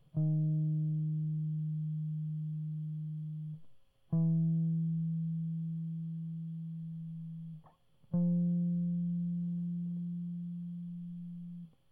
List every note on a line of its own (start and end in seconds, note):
0.18 3.58 D#3
4.14 7.61 E3
8.15 11.69 F3